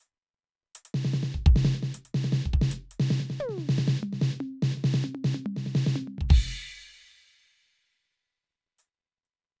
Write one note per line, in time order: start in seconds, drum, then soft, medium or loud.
0.00 hi-hat pedal medium
0.75 closed hi-hat loud
0.94 snare loud
1.05 snare loud
1.14 snare loud
1.23 snare medium
1.34 kick medium
1.46 kick loud
1.56 snare loud
1.65 snare loud
1.75 snare medium
1.83 snare medium
1.94 closed hi-hat loud
2.05 closed hi-hat medium
2.14 snare loud
2.24 snare loud
2.32 snare loud
2.46 kick medium
2.53 kick medium
2.62 snare loud
2.71 closed hi-hat loud
2.91 closed hi-hat medium
3.00 snare loud
3.10 snare loud
3.20 snare medium
3.30 snare medium
3.40 high tom loud
3.49 snare medium
3.58 snare medium
3.69 snare loud
3.78 snare loud
3.88 snare loud
4.03 mid tom loud
4.13 snare medium
4.21 snare loud
4.34 snare soft
4.40 high tom loud
4.62 snare loud
4.62 hi-hat pedal medium
4.71 snare soft
4.77 snare soft
4.84 snare loud
4.94 snare loud
5.04 high tom loud
5.15 high tom loud
5.24 snare loud
5.35 high tom loud
5.46 mid tom loud
5.57 snare medium
5.66 snare medium
5.75 snare loud
5.87 snare loud
5.96 high tom loud
6.07 mid tom medium
6.18 kick medium
6.18 floor tom medium
6.29 kick loud
6.29 crash loud
6.51 crash soft
8.78 hi-hat pedal medium
9.25 closed hi-hat soft